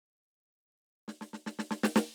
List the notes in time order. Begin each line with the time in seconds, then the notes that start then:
1.08 snare
1.21 snare
1.33 snare
1.46 snare
1.59 snare
1.71 snare
1.83 snare
1.96 snare